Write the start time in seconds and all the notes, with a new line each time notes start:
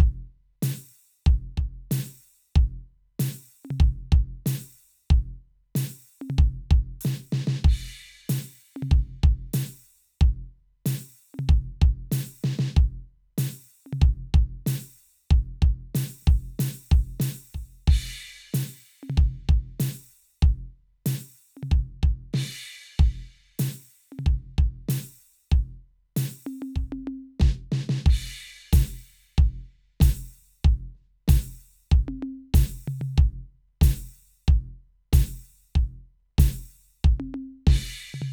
0.01 kick
0.64 open hi-hat, snare
1.28 kick
1.59 kick
1.93 open hi-hat, snare
2.00 snare
2.57 kick
3.21 open hi-hat, snare
3.66 high tom
3.72 floor tom
3.82 kick
4.14 kick
4.48 open hi-hat, snare
5.12 kick
5.77 open hi-hat, snare
6.23 high tom
6.32 floor tom
6.40 kick
6.72 kick
7.03 open hi-hat
7.07 snare
7.34 snare
7.49 snare
7.66 kick, crash
8.31 open hi-hat, snare
8.78 high tom
8.84 floor tom
8.93 kick
9.25 kick
9.55 open hi-hat, snare
10.23 kick
10.88 open hi-hat, snare
11.36 high tom
11.41 floor tom
11.51 kick
11.83 kick
12.13 open hi-hat, snare
12.46 snare
12.61 snare
12.78 kick
13.40 open hi-hat, snare
13.88 high tom
13.94 floor tom
14.03 kick
14.36 kick
14.68 open hi-hat, snare
15.32 kick
15.64 kick
15.97 open hi-hat, snare
16.24 snare
16.29 kick
16.61 open hi-hat, snare
16.93 kick
17.22 open hi-hat, snare
17.56 kick
17.89 kick, crash
18.56 open hi-hat, snare
19.05 high tom
19.11 floor tom
19.19 kick
19.51 kick
19.82 open hi-hat, snare
20.44 kick
21.08 open hi-hat, snare
21.59 high tom
21.64 floor tom
21.73 kick
22.05 kick
22.35 snare, crash
23.01 kick
23.61 open hi-hat, snare
24.14 high tom
24.21 floor tom
24.28 kick
24.60 kick
24.90 open hi-hat, snare
25.53 kick
25.64 snare
26.18 open hi-hat, snare
26.48 high tom
26.64 high tom
26.77 kick
26.94 high tom
27.09 high tom
27.41 kick, snare
27.74 snare
27.91 snare
28.08 kick, crash
28.74 open hi-hat, kick, snare
29.40 kick
30.02 open hi-hat, kick, snare
30.66 kick
30.97 snare
31.30 open hi-hat, kick, snare
31.93 kick
32.10 high tom
32.24 high tom
32.56 open hi-hat, kick, snare
32.89 floor tom
33.03 floor tom
33.19 kick
33.83 open hi-hat, kick, snare
34.50 kick
35.14 open hi-hat, kick, snare
35.77 kick
36.40 open hi-hat, kick, snare
37.06 kick
37.22 high tom
37.36 high tom
37.68 kick, snare, crash
38.16 floor tom
38.24 floor tom